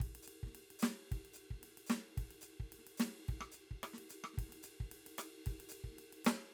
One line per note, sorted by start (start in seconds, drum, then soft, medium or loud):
0.01 kick soft
0.01 ride medium
0.07 kick soft
0.12 kick soft
0.12 ride medium
0.22 hi-hat pedal soft
0.28 ride medium
0.43 kick soft
0.43 snare soft
0.50 snare soft
0.54 snare soft
0.54 ride medium
0.58 snare soft
0.70 ride soft
0.79 snare medium
0.79 hi-hat pedal medium
0.79 ride medium
1.11 kick soft
1.11 snare soft
1.11 ride soft
1.25 ride soft
1.33 hi-hat pedal soft
1.33 ride soft
1.50 kick soft
1.50 snare soft
1.56 snare soft
1.60 snare soft
1.62 snare soft
1.62 ride medium
1.64 snare soft
1.66 snare soft
1.77 ride soft
1.86 snare medium
1.86 hi-hat pedal medium
1.86 ride medium
2.17 kick soft
2.17 ride medium
2.25 kick soft
2.31 ride soft
2.41 hi-hat pedal medium
2.41 ride soft
2.60 kick soft
2.72 kick soft
2.72 ride medium
2.78 snare soft
2.87 ride soft
2.97 snare medium
2.97 hi-hat pedal medium
2.97 ride medium
3.28 kick soft
3.28 ride soft
3.36 kick soft
3.41 cross-stick medium
3.52 hi-hat pedal medium
3.52 ride soft
3.71 kick soft
3.83 cross-stick medium
3.83 ride medium
3.93 snare soft
3.98 ride soft
4.09 hi-hat pedal soft
4.09 ride medium
4.24 cross-stick medium
4.33 snare soft
4.38 kick soft
4.38 ride medium
4.48 snare soft
4.48 ride soft
4.55 snare soft
4.63 hi-hat pedal medium
4.63 ride medium
4.80 kick soft
4.91 ride medium
5.06 ride medium
5.18 cross-stick medium
5.18 hi-hat pedal medium
5.18 ride medium
5.46 kick soft
5.46 ride medium
5.54 kick soft
5.60 ride soft
5.69 hi-hat pedal medium
5.69 ride medium
5.84 kick soft
5.91 snare soft
5.95 snare soft
5.98 snare soft
5.98 ride soft
6.13 ride soft
6.25 snare medium
6.25 hi-hat pedal medium
6.25 ride medium